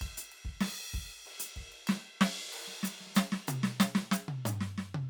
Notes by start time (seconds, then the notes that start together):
0.02 kick, ride bell
0.18 closed hi-hat
0.33 ride
0.45 kick
0.61 snare, crash
0.94 kick, ride
1.11 closed hi-hat
1.27 ride
1.40 closed hi-hat
1.57 kick, ride
1.73 ride
1.88 snare, ride bell
2.22 snare, ride
2.53 crash
2.68 snare
2.84 snare, hi-hat pedal
3.01 snare
3.07 snare
3.12 snare, hi-hat pedal
3.17 snare
3.33 snare
3.48 hi-hat pedal, high tom
3.64 snare
3.81 snare, hi-hat pedal
3.96 snare
4.12 snare, hi-hat pedal
4.29 high tom
4.46 hi-hat pedal, mid tom
4.61 snare
4.78 snare
4.95 high tom